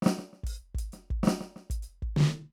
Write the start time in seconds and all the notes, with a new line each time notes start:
0.02 snare, hi-hat pedal
0.06 snare
0.19 snare
0.33 snare
0.43 open hi-hat, kick
0.55 hi-hat pedal
0.74 open hi-hat, kick
0.92 snare, hi-hat pedal
1.10 kick
1.23 snare
1.27 snare
1.41 snare
1.56 snare
1.70 closed hi-hat, kick
1.82 hi-hat pedal
2.02 kick
2.16 snare
2.20 snare